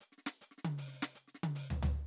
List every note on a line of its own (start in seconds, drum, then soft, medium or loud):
0.02 hi-hat pedal medium
0.12 snare soft
0.18 snare soft
0.26 snare medium
0.41 hi-hat pedal medium
0.51 snare soft
0.58 snare soft
0.65 high tom medium
0.78 hi-hat pedal loud
0.88 snare soft
0.94 snare soft
1.02 snare loud
1.15 hi-hat pedal loud
1.28 snare soft
1.34 snare soft
1.43 high tom medium
1.55 hi-hat pedal loud
1.70 floor tom medium
1.83 floor tom loud